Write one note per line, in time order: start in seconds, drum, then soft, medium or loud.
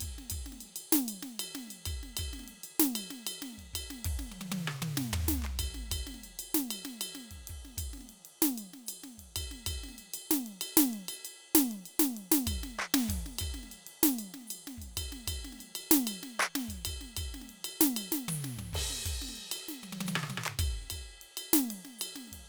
0.01 kick soft
0.01 ride bell medium
0.07 kick soft
0.19 snare soft
0.30 kick soft
0.30 ride bell loud
0.46 snare soft
0.53 snare soft
0.57 snare soft
0.57 ride bell medium
0.62 snare soft
0.76 ride bell medium
0.93 snare loud
0.93 hi-hat pedal medium
1.08 ride bell medium
1.23 snare medium
1.40 hi-hat pedal medium
1.40 ride bell loud
1.55 snare medium
1.67 snare soft
1.67 ride bell medium
1.86 kick soft
1.86 ride bell loud
1.93 kick soft
2.03 snare soft
2.17 kick soft
2.17 ride bell loud
2.33 snare soft
2.40 snare soft
2.44 snare soft
2.48 snare soft
2.48 ride medium
2.52 snare soft
2.64 ride bell medium
2.80 snare loud
2.96 ride bell loud
3.11 snare soft
3.27 hi-hat pedal medium
3.27 ride bell loud
3.42 snare medium
3.53 snare soft
3.58 kick soft
3.58 ride soft
3.74 kick soft
3.74 ride bell loud
3.91 snare soft
4.05 kick soft
4.05 ride loud
4.13 kick soft
4.19 snare soft
4.32 high tom medium
4.41 high tom medium
4.52 high tom loud
4.68 cross-stick medium
4.82 mid tom loud
4.98 snare medium
5.09 hi-hat pedal soft
5.13 floor tom loud
5.29 snare medium
5.37 hi-hat pedal soft
5.42 percussion medium
5.59 kick soft
5.59 ride bell loud
5.65 kick soft
5.75 snare soft
5.92 kick soft
5.92 ride bell loud
6.07 snare soft
6.15 snare soft
6.24 ride bell soft
6.39 ride bell medium
6.55 snare medium
6.71 ride bell loud
6.85 snare medium
7.01 hi-hat pedal medium
7.01 ride bell loud
7.15 snare soft
7.31 kick soft
7.31 ride medium
7.37 snare soft
7.48 kick soft
7.48 ride medium
7.65 snare soft
7.78 kick soft
7.78 ride bell medium
7.94 snare soft
7.98 snare soft
8.01 snare soft
8.08 snare soft
8.08 ride medium
8.25 ride medium
8.42 snare loud
8.58 ride bell medium
8.74 snare soft
8.87 hi-hat pedal medium
8.87 ride bell medium
9.04 snare soft
9.15 kick soft
9.15 snare soft
9.20 ride medium
9.36 kick soft
9.36 ride bell loud
9.42 kick soft
9.52 snare soft
9.67 kick soft
9.67 ride bell loud
9.73 kick soft
9.84 snare soft
9.89 snare soft
9.92 snare soft
9.98 ride bell soft
10.14 ride bell medium
10.26 hi-hat pedal soft
10.31 snare medium
10.47 ride medium
10.62 ride bell loud
10.77 snare loud
10.94 ride medium
11.09 hi-hat pedal medium
11.09 ride bell loud
11.25 ride bell medium
11.55 snare loud
11.63 hi-hat pedal soft
11.72 ride medium
11.86 ride bell medium
12.00 snare loud
12.14 hi-hat pedal soft
12.14 ride medium
12.32 snare loud
12.47 kick soft
12.47 ride bell loud
12.54 kick soft
12.64 snare soft
12.79 percussion medium
12.94 snare loud
13.09 kick soft
13.09 hi-hat pedal medium
13.09 ride loud
13.16 kick soft
13.26 snare soft
13.39 kick soft
13.39 ride bell loud
13.54 snare soft
13.63 snare soft
13.72 ride bell soft
13.87 ride medium
14.03 snare loud
14.10 hi-hat pedal medium
14.19 ride bell medium
14.34 snare soft
14.42 snare soft
14.48 hi-hat pedal medium
14.48 ride bell medium
14.68 snare soft
14.78 kick soft
14.78 snare soft
14.82 ride bell soft
14.94 kick soft
14.94 hi-hat pedal soft
14.94 ride bell loud
15.13 snare soft
15.28 kick soft
15.28 ride bell loud
15.45 snare soft
15.53 snare soft
15.60 snare soft
15.60 ride bell medium
15.76 ride bell loud
15.92 snare loud
16.07 ride bell loud
16.23 snare soft
16.40 percussion loud
16.40 hi-hat pedal loud
16.56 snare medium
16.69 kick soft
16.69 ride bell medium
16.85 kick soft
16.85 ride bell loud
16.94 kick soft
17.01 snare soft
17.17 kick soft
17.17 ride bell loud
17.34 snare soft
17.42 snare soft
17.49 snare soft
17.49 ride medium
17.65 ride bell loud
17.81 snare loud
17.97 ride bell loud
18.12 snare medium
18.29 hi-hat pedal loud
18.29 mid tom loud
18.45 snare medium
18.57 kick soft
18.57 snare soft
18.57 high tom medium
18.74 kick soft
18.74 crash loud
18.90 snare soft
19.06 kick soft
19.06 ride loud
19.12 kick soft
19.22 snare soft
19.29 snare soft
19.36 ride medium
19.52 ride bell loud
19.69 snare soft
19.83 hi-hat pedal soft
19.83 high tom medium
19.93 high tom medium
20.01 high tom loud
20.07 hi-hat pedal medium
20.07 high tom medium
20.16 cross-stick loud
20.23 cross-stick medium
20.30 hi-hat pedal soft
20.30 high tom medium
20.38 cross-stick medium
20.44 percussion loud
20.59 kick medium
20.59 ride bell loud
20.77 kick soft
20.82 snare soft
20.88 snare soft
20.88 ride bell loud
20.92 kick soft
21.22 ride medium
21.38 ride bell loud
21.54 snare loud
21.62 snare soft
21.71 ride loud
21.85 snare soft
21.99 hi-hat pedal medium
21.99 ride bell loud
22.16 snare soft
22.28 snare soft
22.32 kick soft
22.32 ride medium